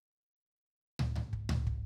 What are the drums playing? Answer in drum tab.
T1 |------oo-o--|
FT |------oo-o--|
BD |--------o-o-|